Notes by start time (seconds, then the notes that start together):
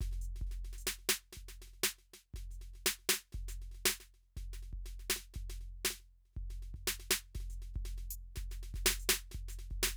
0.01 kick, snare
0.11 snare
0.21 hi-hat pedal
0.36 snare
0.41 kick
0.46 snare
0.51 snare
0.64 snare
0.73 snare
0.75 snare, hi-hat pedal
0.87 snare
0.98 snare
1.09 snare
1.32 snare
1.37 kick
1.48 snare
1.62 snare
1.67 snare
1.73 snare
1.83 snare
1.98 snare
2.13 snare
2.34 kick, snare
2.51 snare, hi-hat pedal, crash
2.61 snare
2.73 snare
2.75 snare
2.86 snare
2.99 snare
3.09 snare
3.13 snare
3.20 snare
3.32 kick, snare
3.36 snare
3.48 snare, hi-hat pedal
3.61 snare
3.71 snare
3.74 snare
3.85 snare
3.89 snare
4.00 snare
4.14 snare
4.23 snare
4.37 kick, snare
4.53 snare
4.62 snare
4.73 kick
4.86 snare
4.99 snare
5.10 snare
5.16 snare
5.34 kick, snare
5.49 snare, hi-hat pedal
5.61 snare
5.85 snare
5.90 snare
6.00 snare
6.25 snare
6.33 snare
6.36 kick, snare
6.50 snare, hi-hat pedal
6.62 snare
6.74 kick, snare
6.87 snare
6.99 snare
7.11 snare
7.35 kick, snare
7.40 snare
7.50 snare, hi-hat pedal
7.62 snare
7.74 kick, snare
7.85 snare
7.97 snare
8.10 closed hi-hat
8.36 kick, snare
8.51 snare, hi-hat pedal
8.63 snare
8.74 kick, snare
8.76 snare
8.86 snare
8.90 snare
8.98 snare, hi-hat pedal
9.09 snare
9.13 snare
9.31 kick, snare
9.48 snare, hi-hat pedal
9.59 snare
9.70 kick, snare
9.83 snare
9.87 snare